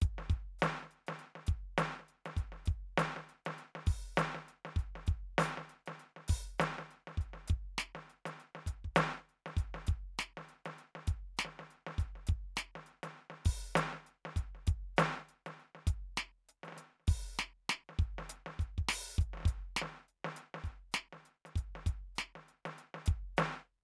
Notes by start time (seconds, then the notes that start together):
0.01 closed hi-hat, kick
0.18 snare
0.30 kick, open hi-hat
0.58 snare, hi-hat pedal
0.63 closed hi-hat
0.83 snare
0.91 closed hi-hat
1.06 snare, closed hi-hat
1.19 closed hi-hat
1.35 snare
1.47 closed hi-hat, kick
1.77 closed hi-hat, snare, hi-hat pedal
1.99 snare
2.08 closed hi-hat
2.25 snare, closed hi-hat
2.37 kick, closed hi-hat
2.52 snare
2.66 kick, open hi-hat
2.97 closed hi-hat, snare, hi-hat pedal
3.16 snare
3.29 closed hi-hat
3.45 snare, closed hi-hat
3.58 closed hi-hat
3.75 snare
3.86 kick, open hi-hat
4.16 closed hi-hat, snare, hi-hat pedal
4.34 snare
4.48 closed hi-hat
4.65 snare, closed hi-hat
4.76 kick, closed hi-hat
4.95 snare
5.07 kick, closed hi-hat
5.38 open hi-hat, snare, hi-hat pedal
5.57 snare
5.69 closed hi-hat
5.86 snare, closed hi-hat
5.99 closed hi-hat
6.16 snare
6.28 open hi-hat, kick
6.58 closed hi-hat, snare, hi-hat pedal
6.78 snare
6.91 closed hi-hat
7.07 snare, closed hi-hat
7.17 kick, closed hi-hat
7.33 snare
7.48 open hi-hat, kick
7.78 closed hi-hat, snare, hi-hat pedal
7.95 snare
8.10 closed hi-hat
8.25 closed hi-hat, snare
8.40 closed hi-hat
8.55 snare
8.66 closed hi-hat, kick
8.84 kick
8.95 closed hi-hat, snare, hi-hat pedal
9.18 snare
9.29 closed hi-hat
9.46 snare, closed hi-hat
9.57 closed hi-hat, kick
9.74 snare
9.87 open hi-hat, kick
10.18 closed hi-hat, snare, hi-hat pedal
10.37 snare
10.48 closed hi-hat
10.65 snare, closed hi-hat
10.78 closed hi-hat
10.95 snare
11.07 closed hi-hat, kick
11.37 closed hi-hat, snare, hi-hat pedal
11.45 snare
11.59 snare
11.70 closed hi-hat
11.87 snare
11.98 closed hi-hat, kick
12.15 snare
12.27 closed hi-hat, kick
12.56 closed hi-hat, snare, hi-hat pedal
12.75 snare
12.86 closed hi-hat
13.03 closed hi-hat, snare
13.17 closed hi-hat
13.30 snare
13.45 open hi-hat, kick
13.74 closed hi-hat, snare, hi-hat pedal
13.93 snare
14.06 closed hi-hat
14.25 snare
14.36 closed hi-hat, kick
14.55 snare
14.67 open hi-hat, kick
14.96 closed hi-hat, snare, hi-hat pedal
15.18 snare
15.29 closed hi-hat
15.46 snare, closed hi-hat
15.59 closed hi-hat
15.75 snare
15.87 closed hi-hat, kick
16.16 closed hi-hat, snare, hi-hat pedal
16.49 closed hi-hat
16.63 snare, closed hi-hat
16.68 snare
16.72 snare
16.77 closed hi-hat, snare
17.00 snare
17.07 open hi-hat, kick
17.38 closed hi-hat, snare, hi-hat pedal
17.69 closed hi-hat, snare
17.89 snare
17.99 kick, closed hi-hat
18.18 snare
18.29 closed hi-hat
18.46 snare
18.59 kick, closed hi-hat
18.78 kick
18.89 open hi-hat, snare
19.16 kick, hi-hat pedal
19.21 closed hi-hat
19.33 snare
19.37 snare
19.40 snare
19.43 kick, snare
19.47 closed hi-hat, snare
19.76 closed hi-hat, snare
19.82 snare
20.08 closed hi-hat
20.24 snare
20.36 closed hi-hat
20.54 snare
20.64 kick, closed hi-hat
20.91 closed hi-hat, snare, hi-hat pedal
21.12 snare
21.25 closed hi-hat
21.45 snare, closed hi-hat
21.55 closed hi-hat, kick
21.75 snare
21.86 open hi-hat, kick
22.15 closed hi-hat, snare, hi-hat pedal
22.35 snare
22.48 closed hi-hat
22.65 snare, closed hi-hat
22.78 closed hi-hat
22.94 snare
23.06 closed hi-hat, kick
23.37 closed hi-hat, snare, hi-hat pedal
23.53 closed hi-hat